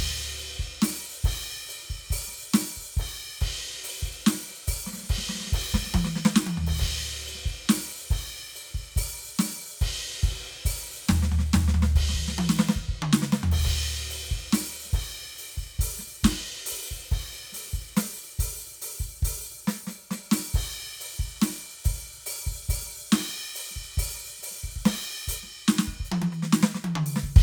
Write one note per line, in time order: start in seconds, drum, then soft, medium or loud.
0.40 open hi-hat medium
0.60 kick soft
0.60 open hi-hat soft
0.83 open hi-hat loud
0.83 snare loud
1.05 open hi-hat soft
1.25 kick medium
1.25 crash loud
1.46 open hi-hat soft
1.69 open hi-hat medium
1.91 kick soft
1.91 open hi-hat soft
2.11 open hi-hat loud
2.11 kick medium
2.28 snare soft
2.54 open hi-hat loud
2.54 snare loud
2.77 kick soft
2.77 open hi-hat soft
2.98 kick medium
2.98 crash loud
3.20 open hi-hat soft
3.42 kick medium
3.42 ride loud
3.85 open hi-hat loud
4.03 kick soft
4.03 open hi-hat medium
4.27 open hi-hat loud
4.27 snare loud
4.46 open hi-hat soft
4.51 snare soft
4.58 snare soft
4.68 open hi-hat loud
4.68 kick medium
4.87 snare medium
4.94 snare soft
4.98 snare soft
5.10 kick medium
5.10 ride loud
5.18 snare soft
5.30 snare medium
5.36 snare soft
5.41 snare soft
5.48 snare soft
5.53 kick medium
5.53 crash loud
5.74 kick medium
5.74 snare medium
5.87 snare soft
5.95 kick medium
5.95 high tom loud
6.05 snare medium
6.16 snare medium
6.26 snare loud
6.35 kick soft
6.35 snare loud
6.47 high tom loud
6.58 floor tom loud
6.68 kick soft
6.68 crash loud
6.79 kick medium
6.79 ride loud
7.28 open hi-hat medium
7.35 snare soft
7.46 kick soft
7.46 open hi-hat soft
7.70 open hi-hat loud
7.70 snare loud
7.90 open hi-hat medium
8.11 kick medium
8.11 crash loud
8.56 open hi-hat medium
8.75 kick soft
8.75 open hi-hat soft
8.97 open hi-hat loud
8.97 kick medium
9.19 open hi-hat soft
9.40 open hi-hat loud
9.40 snare loud
9.60 open hi-hat medium
9.82 kick medium
9.82 ride loud
10.24 kick medium
10.24 crash medium
10.66 open hi-hat loud
10.66 kick medium
10.90 mid tom soft
11.09 kick soft
11.09 snare loud
11.09 floor tom loud
11.23 snare medium
11.31 kick soft
11.31 floor tom medium
11.40 snare medium
11.54 snare loud
11.54 floor tom loud
11.69 snare medium
11.73 kick soft
11.73 floor tom loud
11.83 snare medium
11.96 kick medium
11.96 ride loud
12.10 snare soft
12.15 kick soft
12.15 high tom medium
12.29 snare medium
12.38 hi-hat pedal soft
12.38 high tom loud
12.50 snare loud
12.60 snare loud
12.76 kick soft
12.89 kick soft
13.03 mid tom loud
13.14 snare loud
13.23 snare medium
13.33 snare loud
13.44 floor tom loud
13.52 crash loud
13.58 kick soft
13.65 kick medium
13.65 ride loud
14.11 open hi-hat medium
14.32 kick medium
14.32 open hi-hat soft
14.53 open hi-hat loud
14.53 snare loud
14.73 open hi-hat soft
14.86 snare soft
14.90 snare soft
14.94 kick medium
14.94 snare soft
14.94 crash loud
15.39 open hi-hat medium
15.58 kick soft
15.58 open hi-hat soft
15.80 open hi-hat loud
15.80 kick medium
15.99 snare soft
15.99 open hi-hat soft
16.24 kick medium
16.24 snare loud
16.24 ride loud
16.47 open hi-hat soft
16.67 open hi-hat loud
16.73 kick soft
16.88 kick soft
16.88 open hi-hat medium
17.12 kick medium
17.12 crash medium
17.33 open hi-hat medium
17.53 open hi-hat medium
17.53 snare soft
17.60 snare soft
17.65 snare soft
17.68 snare soft
17.71 kick soft
17.71 snare soft
17.76 open hi-hat soft
17.98 open hi-hat loud
17.98 snare loud
18.16 open hi-hat soft
18.40 open hi-hat loud
18.40 kick medium
18.60 open hi-hat soft
18.83 open hi-hat loud
19.01 kick soft
19.01 open hi-hat soft
19.23 open hi-hat loud
19.23 kick medium
19.47 open hi-hat soft
19.68 open hi-hat medium
19.68 snare medium
19.88 open hi-hat medium
19.88 snare medium
20.12 open hi-hat medium
20.12 snare medium
20.32 open hi-hat loud
20.32 snare loud
20.55 kick medium
20.55 crash loud
21.01 open hi-hat loud
21.20 kick soft
21.20 open hi-hat soft
21.43 open hi-hat loud
21.43 snare loud
21.62 open hi-hat soft
21.85 open hi-hat loud
21.85 kick medium
21.85 snare soft
22.06 open hi-hat soft
22.27 open hi-hat loud
22.47 kick soft
22.47 open hi-hat soft
22.70 open hi-hat loud
22.70 kick medium
22.83 snare soft
22.87 snare soft
22.92 open hi-hat soft
23.13 snare loud
23.13 crash loud
23.33 open hi-hat soft
23.56 open hi-hat loud
23.71 snare soft
23.77 kick soft
23.77 open hi-hat soft
23.98 open hi-hat loud
23.98 kick medium
24.21 open hi-hat soft
24.39 snare soft
24.44 open hi-hat loud
24.52 snare soft
24.64 kick soft
24.77 kick soft
24.81 kick soft
24.86 snare loud
24.86 crash loud
25.28 open hi-hat loud
25.28 kick soft
25.34 hi-hat pedal soft
25.44 snare soft
25.69 snare loud
25.79 snare loud
25.88 kick soft
26.01 kick soft
26.06 hi-hat pedal medium
26.13 high tom loud
26.23 high tom loud
26.33 cross-stick soft
26.43 snare medium
26.53 snare loud
26.64 snare loud
26.75 snare medium
26.85 high tom loud
26.96 mid tom loud
27.07 open hi-hat medium
27.17 snare medium
27.24 kick soft
27.37 kick loud
27.37 ride loud